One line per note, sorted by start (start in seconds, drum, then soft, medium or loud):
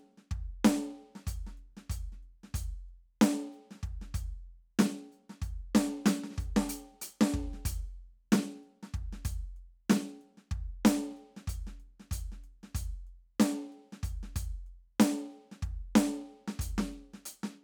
0.01 closed hi-hat soft
0.18 snare soft
0.32 kick medium
0.32 closed hi-hat soft
0.65 closed hi-hat loud
0.65 snare loud
0.97 snare soft
1.16 snare soft
1.20 snare soft
1.27 closed hi-hat medium
1.27 kick medium
1.27 snare soft
1.47 snare soft
1.58 closed hi-hat soft
1.78 snare soft
1.90 closed hi-hat medium
1.90 kick medium
2.13 snare soft
2.24 closed hi-hat soft
2.44 snare soft
2.55 closed hi-hat loud
2.55 kick medium
2.89 closed hi-hat soft
3.22 closed hi-hat loud
3.22 snare loud
3.53 closed hi-hat soft
3.72 snare soft
3.76 snare soft
3.84 kick medium
3.84 closed hi-hat soft
4.02 snare soft
4.15 closed hi-hat medium
4.15 kick medium
4.80 closed hi-hat loud
4.80 snare loud
5.08 snare soft
5.13 closed hi-hat soft
5.30 snare soft
5.43 closed hi-hat soft
5.43 kick medium
5.76 closed hi-hat loud
5.76 snare loud
6.07 closed hi-hat loud
6.07 snare loud
6.24 snare soft
6.31 snare soft
6.34 snare soft
6.37 closed hi-hat soft
6.37 kick medium
6.37 snare soft
6.57 snare loud
6.70 closed hi-hat loud
7.02 closed hi-hat loud
7.22 snare loud
7.35 kick medium
7.54 snare soft
7.66 closed hi-hat loud
7.66 kick medium
8.33 closed hi-hat medium
8.33 snare loud
8.56 snare soft
8.64 closed hi-hat soft
8.84 snare soft
8.95 kick medium
8.95 closed hi-hat soft
9.13 snare soft
9.26 closed hi-hat medium
9.26 kick medium
9.57 closed hi-hat soft
9.91 closed hi-hat loud
9.91 snare loud
10.22 closed hi-hat soft
10.38 snare soft
10.52 kick medium
10.52 closed hi-hat soft
10.86 closed hi-hat loud
10.86 snare loud
11.12 snare soft
11.18 closed hi-hat soft
11.37 snare soft
11.48 closed hi-hat medium
11.48 kick medium
11.68 snare soft
11.81 closed hi-hat soft
12.01 snare soft
12.12 closed hi-hat loud
12.12 kick medium
12.33 snare soft
12.45 closed hi-hat soft
12.64 snare soft
12.76 closed hi-hat loud
12.76 kick medium
13.08 closed hi-hat soft
13.41 closed hi-hat loud
13.41 snare loud
13.73 closed hi-hat soft
13.93 snare soft
14.04 closed hi-hat medium
14.04 kick medium
14.24 snare soft
14.37 closed hi-hat loud
14.37 kick medium
14.67 closed hi-hat soft
15.01 closed hi-hat loud
15.01 snare loud
15.33 closed hi-hat soft
15.52 snare soft
15.63 kick medium
15.63 closed hi-hat soft
15.67 crash soft
15.96 closed hi-hat loud
15.96 snare loud
16.49 snare medium
16.60 closed hi-hat loud
16.60 kick medium
16.79 snare medium
16.93 closed hi-hat soft
17.14 snare soft
17.26 closed hi-hat loud
17.44 snare medium